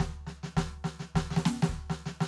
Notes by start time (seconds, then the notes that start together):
0.01 kick, snare
0.28 snare
0.45 snare
0.58 kick, snare
0.86 snare
1.01 snare
1.16 kick, snare, open hi-hat
1.32 snare
1.38 snare
1.47 snare
1.64 snare
1.70 kick
1.91 snare
2.07 snare
2.22 snare